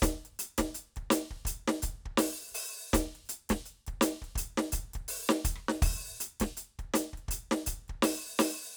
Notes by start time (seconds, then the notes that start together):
0.02 closed hi-hat, kick, snare, hi-hat pedal
0.25 closed hi-hat
0.33 hi-hat pedal
0.39 closed hi-hat
0.58 kick, snare, closed hi-hat
0.75 closed hi-hat
0.96 kick, closed hi-hat
1.10 closed hi-hat, snare
1.31 kick
1.45 closed hi-hat, kick
1.68 snare
1.82 closed hi-hat, kick
2.05 kick
2.18 open hi-hat, snare
2.52 open hi-hat, kick
2.93 closed hi-hat, kick, snare, hi-hat pedal
3.15 closed hi-hat
3.25 hi-hat pedal
3.29 closed hi-hat
3.49 kick, snare, closed hi-hat
3.66 closed hi-hat
3.87 kick, closed hi-hat
4.01 closed hi-hat, snare
4.22 kick, closed hi-hat
4.35 closed hi-hat, kick
4.57 snare
4.72 closed hi-hat, kick
4.93 kick, closed hi-hat
5.08 open hi-hat
5.27 snare, hi-hat pedal
5.45 open hi-hat, kick
5.56 cross-stick, hi-hat pedal
5.68 snare
5.82 open hi-hat, kick
6.19 closed hi-hat, hi-hat pedal
6.40 kick, snare, closed hi-hat
6.57 closed hi-hat
6.79 kick, closed hi-hat
6.94 closed hi-hat, snare
7.13 kick
7.17 closed hi-hat
7.28 closed hi-hat, kick
7.51 snare
7.66 closed hi-hat, kick
7.88 kick, closed hi-hat
8.02 open hi-hat, snare
8.38 open hi-hat, kick, snare